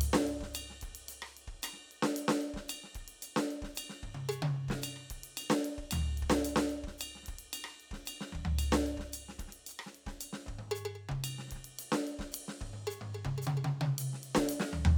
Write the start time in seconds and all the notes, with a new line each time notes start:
0.01 hi-hat pedal, ride
0.13 snare
0.27 ride
0.41 kick, snare
0.54 hi-hat pedal, ride bell
0.70 snare
0.81 kick, ride
0.91 snare
0.95 ride
1.08 hi-hat pedal, ride
1.22 cross-stick
1.37 ride
1.48 kick
1.62 cross-stick, hi-hat pedal, ride bell
1.73 snare
1.91 ride
2.02 snare
2.16 hi-hat pedal, ride
2.28 snare
2.40 hi-hat pedal, ride
2.54 kick, snare
2.69 hi-hat pedal, ride bell
2.83 snare
2.93 kick, snare, ride
2.97 snare
2.99 kick, snare
3.01 snare
3.08 ride
3.22 hi-hat pedal, ride bell
3.36 snare
3.51 ride
3.62 kick, snare
3.75 hi-hat pedal, ride bell
3.89 snare
4.03 kick, mid tom
4.08 kick
4.15 high tom
4.29 hi-hat pedal, percussion
4.42 high tom
4.54 mid tom
4.68 kick, snare
4.82 hi-hat pedal, ride bell
4.96 cross-stick
5.10 kick, ride
5.24 ride
5.37 hi-hat pedal, ride bell
5.50 snare
5.65 ride
5.78 kick
5.91 floor tom, hi-hat pedal, ride bell
6.18 ride
6.22 kick
6.28 kick, snare
6.45 hi-hat pedal, ride bell
6.56 snare
6.69 ride
6.84 kick, snare
6.98 hi-hat pedal, ride bell
7.15 snare
7.23 snare, ride
7.28 kick
7.35 snare, ride
7.39 snare
7.53 hi-hat pedal, ride bell
7.64 cross-stick
7.70 cross-stick
7.80 ride
7.91 kick, snare
8.05 hi-hat pedal, ride bell
8.21 snare
8.32 kick, floor tom
8.45 floor tom
8.59 hi-hat pedal, ride bell
8.72 snare
8.86 ride
8.97 kick, snare
9.12 hi-hat pedal, ride bell
9.28 snare
9.38 kick, snare, ride
9.48 snare
9.52 ride
9.67 hi-hat pedal, ride bell
9.79 cross-stick
9.86 snare
9.95 ride
10.06 kick, snare
10.20 hi-hat pedal, ride bell
10.33 snare
10.46 kick, mid tom
10.54 kick
10.59 mid tom
10.71 hi-hat pedal, percussion
10.85 percussion
10.95 percussion
11.09 kick, high tom
11.24 hi-hat pedal, ride bell
11.38 snare
11.47 snare, ride
11.52 kick, snare
11.61 snare, ride
11.79 hi-hat pedal, ride
11.92 snare
12.07 ride
12.19 kick, snare
12.32 hi-hat pedal, ride
12.48 snare
12.61 kick, mid tom
12.67 kick
12.73 mid tom
12.87 hi-hat pedal, percussion
13.01 mid tom
13.15 percussion
13.25 kick, high tom
13.38 percussion
13.42 hi-hat pedal
13.47 high tom
13.57 percussion
13.65 high tom
13.81 high tom
13.98 hi-hat pedal, ride
14.13 snare
14.22 hi-hat pedal, ride
14.35 kick, snare
14.49 hi-hat pedal, ride
14.60 snare
14.73 floor tom
14.85 floor tom